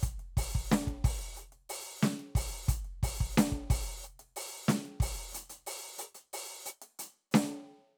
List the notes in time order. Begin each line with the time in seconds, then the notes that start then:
0.01 closed hi-hat, kick, hi-hat pedal
0.20 closed hi-hat
0.37 open hi-hat, kick
0.55 kick
0.70 closed hi-hat, snare, hi-hat pedal
0.87 kick, closed hi-hat
1.04 open hi-hat, kick
1.36 open hi-hat, hi-hat pedal
1.52 closed hi-hat
1.70 open hi-hat
2.01 closed hi-hat, snare, hi-hat pedal
2.20 closed hi-hat
2.35 open hi-hat, kick
2.67 closed hi-hat, kick, hi-hat pedal
2.85 closed hi-hat
3.03 open hi-hat, kick
3.21 kick
3.34 closed hi-hat, snare, hi-hat pedal
3.52 kick, closed hi-hat
3.70 open hi-hat, kick
4.04 open hi-hat, hi-hat pedal
4.20 closed hi-hat
4.36 open hi-hat
4.67 closed hi-hat, snare, hi-hat pedal
4.85 closed hi-hat
5.00 open hi-hat, kick
5.33 closed hi-hat, hi-hat pedal
5.50 closed hi-hat
5.67 open hi-hat
5.98 open hi-hat, hi-hat pedal
6.15 closed hi-hat
6.33 open hi-hat
6.66 open hi-hat, hi-hat pedal
6.82 closed hi-hat
6.99 open hi-hat
7.32 snare, hi-hat pedal